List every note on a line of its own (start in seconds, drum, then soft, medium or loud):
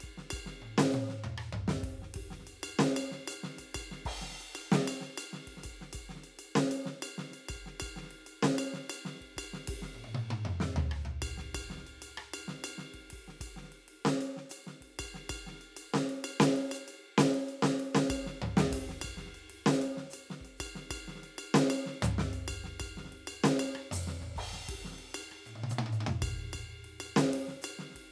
0.01 kick soft
0.01 ride bell medium
0.12 kick soft
0.18 snare soft
0.31 kick soft
0.31 ride bell loud
0.40 kick soft
0.46 snare soft
0.62 high tom medium
0.78 snare loud
0.92 hi-hat pedal medium
0.92 high tom loud
1.09 snare soft
1.24 mid tom medium
1.38 cross-stick medium
1.53 floor tom medium
1.68 snare loud
1.81 kick soft
1.81 hi-hat pedal soft
1.81 ride medium
1.90 kick soft
2.02 snare soft
2.15 kick soft
2.15 ride loud
2.24 kick soft
2.31 snare soft
2.40 snare soft
2.47 ride bell medium
2.64 ride bell loud
2.79 snare loud
2.97 ride bell loud
3.12 snare soft
3.28 hi-hat pedal medium
3.28 ride bell loud
3.44 snare medium
3.57 kick soft
3.57 snare soft
3.57 ride bell medium
3.75 kick soft
3.75 ride bell loud
3.81 kick soft
3.92 snare soft
4.06 kick soft
4.06 crash loud
4.13 kick soft
4.22 snare soft
4.31 snare soft
4.41 ride bell medium
4.56 ride bell loud
4.72 snare loud
4.81 snare soft
4.88 ride bell loud
5.01 snare soft
5.18 hi-hat pedal medium
5.18 ride bell loud
5.33 snare soft
5.47 kick soft
5.47 ride medium
5.57 snare soft
5.64 kick soft
5.64 ride bell medium
5.71 kick soft
5.82 snare soft
5.93 kick soft
5.93 ride bell loud
6.10 snare soft
6.16 snare soft
6.21 snare soft
6.21 ride bell medium
6.25 snare soft
6.39 ride bell medium
6.56 snare loud
6.56 hi-hat pedal medium
6.72 ride bell medium
6.86 snare medium
7.03 hi-hat pedal medium
7.03 ride bell loud
7.18 snare medium
7.31 snare soft
7.31 ride bell medium
7.49 kick soft
7.49 ride bell loud
7.56 kick soft
7.67 snare soft
7.80 kick soft
7.80 ride bell loud
7.97 snare soft
8.03 snare soft
8.07 snare soft
8.11 snare soft
8.11 ride medium
8.15 snare soft
8.27 ride bell medium
8.43 snare loud
8.59 ride bell loud
8.74 snare soft
8.90 hi-hat pedal medium
8.90 ride bell loud
9.06 snare medium
9.16 snare soft
9.21 kick soft
9.21 ride soft
9.37 kick soft
9.37 ride bell loud
9.54 snare soft
9.68 kick soft
9.68 ride loud
9.76 kick soft
9.83 snare soft
9.95 high tom medium
10.04 high tom medium
10.15 high tom loud
10.31 high tom medium
10.46 mid tom loud
10.61 snare medium
10.72 hi-hat pedal soft
10.77 floor tom loud
10.92 cross-stick medium
11.00 hi-hat pedal soft
11.06 mid tom medium
11.22 kick soft
11.22 ride bell loud
11.28 kick soft
11.38 snare soft
11.55 kick soft
11.55 ride bell loud
11.70 snare soft
11.78 snare soft
11.87 ride bell soft
12.03 ride bell medium
12.18 cross-stick medium
12.34 ride bell loud
12.48 snare medium
12.64 hi-hat pedal medium
12.64 ride bell loud
12.79 snare soft
12.94 kick soft
12.94 ride medium
13.00 snare soft
13.11 kick soft
13.11 ride medium
13.28 snare soft
13.41 kick soft
13.41 ride bell medium
13.57 snare soft
13.61 snare soft
13.64 snare soft
13.71 snare soft
13.71 ride medium
13.89 ride medium
14.06 snare loud
14.21 ride bell medium
14.37 snare soft
14.50 hi-hat pedal medium
14.50 ride bell medium
14.67 snare soft
14.79 kick soft
14.79 snare soft
14.83 ride medium
15.00 kick soft
15.00 ride bell loud
15.05 kick soft
15.15 snare soft
15.30 kick soft
15.30 ride bell loud
15.36 kick soft
15.47 snare soft
15.52 snare soft
15.56 snare soft
15.62 ride bell soft
15.77 ride bell medium
15.90 hi-hat pedal soft
15.94 snare medium
16.10 ride medium
16.25 ride bell loud
16.41 snare loud
16.57 ride medium
16.72 hi-hat pedal medium
16.72 ride bell loud
16.88 ride bell medium
17.18 snare loud
17.26 hi-hat pedal soft
17.35 ride medium
17.49 ride bell medium
17.63 snare loud
17.77 hi-hat pedal soft
17.77 ride medium
17.95 snare loud
18.10 kick soft
18.10 ride bell loud
18.17 kick soft
18.27 snare soft
18.42 floor tom medium
18.58 snare loud
18.72 kick soft
18.72 hi-hat pedal medium
18.72 ride loud
18.79 kick soft
18.90 snare soft
19.02 kick soft
19.02 ride bell loud
19.18 snare soft
19.27 snare soft
19.35 ride bell soft
19.50 ride medium
19.67 snare loud
19.74 hi-hat pedal medium
19.82 ride bell medium
19.97 snare soft
20.05 snare soft
20.11 hi-hat pedal medium
20.11 ride bell medium
20.31 snare soft
20.41 kick soft
20.41 snare soft
20.45 ride bell soft
20.57 kick soft
20.57 hi-hat pedal soft
20.57 ride bell loud
20.76 snare soft
20.91 kick soft
20.91 ride bell loud
21.08 snare soft
21.16 snare soft
21.23 snare soft
21.23 ride bell medium
21.39 ride bell loud
21.55 snare loud
21.71 ride bell loud
21.87 snare soft
22.03 hi-hat pedal loud
22.03 floor tom loud
22.19 snare medium
22.32 kick soft
22.32 ride bell medium
22.48 kick soft
22.48 ride bell loud
22.57 kick soft
22.65 snare soft
22.80 kick soft
22.80 ride bell loud
22.98 snare soft
23.05 snare soft
23.12 snare soft
23.12 ride medium
23.28 ride bell loud
23.44 snare loud
23.60 ride bell loud
23.76 cross-stick medium
23.92 hi-hat pedal loud
23.92 mid tom loud
24.08 snare medium
24.21 kick soft
24.21 snare soft
24.21 high tom medium
24.37 kick soft
24.37 crash loud
24.54 snare soft
24.69 kick soft
24.69 ride loud
24.75 kick soft
24.85 snare soft
24.92 snare soft
24.99 ride medium
25.15 ride bell loud
25.32 cross-stick soft
25.46 hi-hat pedal soft
25.46 high tom medium
25.56 high tom medium
25.64 high tom loud
25.70 hi-hat pedal medium
25.70 high tom medium
25.79 high tom loud
25.87 high tom medium
25.93 hi-hat pedal soft
25.93 high tom medium
26.01 high tom medium
26.07 mid tom loud
26.22 kick medium
26.22 ride bell loud
26.40 kick soft
26.45 snare soft
26.51 snare soft
26.51 ride bell loud
26.55 kick soft
26.85 ride medium
27.01 ride bell loud
27.17 snare loud
27.25 snare soft
27.34 ride loud
27.48 snare soft
27.62 hi-hat pedal medium
27.62 ride bell loud
27.79 snare soft
27.91 snare soft
27.95 kick soft
27.95 ride medium